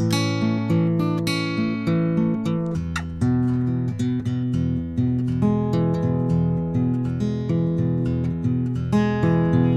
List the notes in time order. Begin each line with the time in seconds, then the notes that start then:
0.00 A2
0.12 C#4
0.71 E3
1.00 D4
1.28 C#4
1.88 E3
2.47 E3
2.77 E2
3.23 B2
3.50 E2
3.69 E3
4.01 B2
4.27 B2
4.55 E2
4.99 B2
5.30 E2
5.74 E3
6.04 B2
6.31 E2
6.76 B2
7.07 E2
7.51 E3
7.80 B2
8.07 E2
8.46 B2
8.77 E2
9.24 E3
9.55 B2